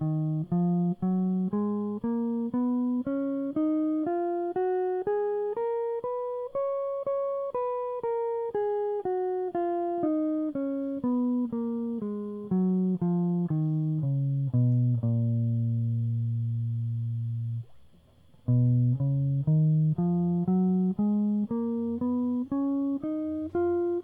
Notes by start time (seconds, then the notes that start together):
0.03 D#3
0.53 F3
1.04 F#3
1.54 G#3
2.05 A#3
2.55 B3
3.08 C#4
3.57 D#4
4.07 F4
4.57 F#4
5.08 G#4
5.57 A#4
6.05 B4
6.56 C#5
7.07 C#5
7.55 B4
8.04 A#4
8.55 G#4
9.06 F#4
9.56 F4
10.04 D#4
10.56 C#4
11.05 B3
11.54 A#3
12.03 G#3
12.53 F#3
13.03 F3
13.52 D#3
14.05 C#3
14.56 B2
15.05 A#2
18.50 B2
19.02 C#3
19.49 D#3
20.00 F3
20.49 F#3
21.00 G#3
21.52 A#3
22.02 B3
22.52 C#4
23.04 D#4
23.56 F4